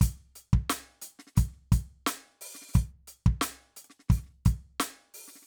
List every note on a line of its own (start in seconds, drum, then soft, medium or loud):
0.01 closed hi-hat loud
0.01 kick loud
0.01 snare soft
0.11 snare soft
0.16 snare soft
0.20 snare soft
0.35 closed hi-hat medium
0.53 kick loud
0.70 closed hi-hat loud
0.70 snare loud
1.02 closed hi-hat medium
1.19 snare soft
1.27 snare soft
1.35 closed hi-hat loud
1.35 kick loud
1.35 snare soft
1.42 snare soft
1.48 snare soft
1.53 snare soft
1.57 snare soft
1.62 snare soft
1.72 closed hi-hat medium
1.72 kick loud
2.07 closed hi-hat loud
2.07 snare loud
2.41 open hi-hat loud
2.55 snare soft
2.62 snare soft
2.69 snare soft
2.74 open hi-hat loud
2.74 kick loud
2.74 snare soft
2.74 hi-hat pedal soft
2.80 snare soft
2.85 snare soft
3.07 closed hi-hat medium
3.26 kick loud
3.41 closed hi-hat loud
3.41 snare loud
3.76 closed hi-hat medium
3.84 closed hi-hat soft
3.90 snare soft
3.99 snare soft
4.09 open hi-hat medium
4.09 kick loud
4.09 snare soft
4.14 snare soft
4.14 hi-hat pedal soft
4.22 snare soft
4.26 snare soft
4.29 snare soft
4.45 closed hi-hat medium
4.45 kick loud
4.80 open hi-hat loud
4.80 snare loud
5.14 open hi-hat medium
5.20 open hi-hat soft
5.28 snare soft
5.35 snare soft
5.42 snare soft